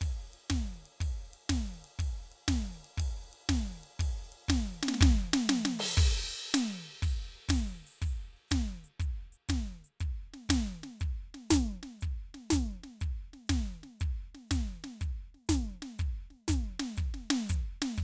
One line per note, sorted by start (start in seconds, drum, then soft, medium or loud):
0.01 kick medium
0.01 ride loud
0.33 ride soft
0.50 kick medium
0.50 snare medium
0.50 ride loud
0.86 ride soft
1.00 kick medium
1.00 ride loud
1.33 ride medium
1.49 kick medium
1.49 snare medium
1.49 ride loud
1.84 ride medium
1.99 kick medium
1.99 ride loud
2.32 ride soft
2.48 kick medium
2.48 snare loud
2.48 ride loud
2.85 ride soft
2.98 kick medium
2.98 ride loud
3.33 ride soft
3.49 kick medium
3.49 snare loud
3.49 ride loud
3.83 ride soft
3.99 kick medium
3.99 ride loud
4.32 ride medium
4.48 kick medium
4.48 snare loud
4.48 ride loud
4.83 snare medium
4.88 snare medium
4.94 snare medium
5.01 kick loud
5.01 snare loud
5.33 snare loud
5.49 snare loud
5.65 snare loud
5.79 crash loud
5.97 kick medium
5.97 crash medium
6.54 open hi-hat loud
6.54 snare loud
7.02 open hi-hat medium
7.02 kick medium
7.36 open hi-hat soft
7.49 open hi-hat loud
7.49 kick medium
7.49 snare loud
7.87 open hi-hat soft
8.02 open hi-hat medium
8.02 kick medium
8.36 open hi-hat soft
8.48 closed hi-hat medium
8.48 kick medium
8.48 snare loud
8.48 hi-hat pedal soft
8.84 closed hi-hat soft
9.00 closed hi-hat medium
9.00 kick medium
9.32 closed hi-hat soft
9.49 closed hi-hat medium
9.49 kick medium
9.49 snare medium
9.84 closed hi-hat soft
10.00 closed hi-hat medium
10.00 kick medium
10.34 snare soft
10.46 closed hi-hat loud
10.46 kick medium
10.46 snare loud
10.46 hi-hat pedal soft
10.83 snare soft
11.00 closed hi-hat medium
11.00 kick medium
11.34 snare soft
11.47 closed hi-hat medium
11.47 snare loud
11.47 hi-hat pedal soft
11.52 kick medium
11.83 snare soft
12.01 closed hi-hat soft
12.01 kick soft
12.34 snare soft
12.50 closed hi-hat loud
12.50 kick medium
12.50 snare loud
12.50 hi-hat pedal medium
12.84 snare soft
13.01 closed hi-hat medium
13.01 kick medium
13.33 snare soft
13.47 closed hi-hat loud
13.47 kick medium
13.47 snare medium
13.47 hi-hat pedal soft
13.83 snare soft
14.00 closed hi-hat medium
14.00 kick medium
14.35 snare soft
14.48 closed hi-hat loud
14.48 kick medium
14.48 snare medium
14.48 hi-hat pedal soft
14.84 snare medium
15.01 closed hi-hat medium
15.01 kick soft
15.34 snare soft
15.47 closed hi-hat loud
15.47 kick medium
15.47 snare loud
15.47 hi-hat pedal soft
15.82 snare medium
15.99 closed hi-hat medium
15.99 kick medium
16.30 snare soft
16.48 closed hi-hat loud
16.48 kick medium
16.48 snare medium
16.48 hi-hat pedal soft
16.80 snare medium
16.97 closed hi-hat medium
16.97 kick medium
17.14 snare soft
17.30 snare loud
17.48 closed hi-hat loud
17.48 kick medium
17.48 hi-hat pedal soft
17.82 closed hi-hat medium
17.82 snare medium
17.97 closed hi-hat medium
17.97 kick medium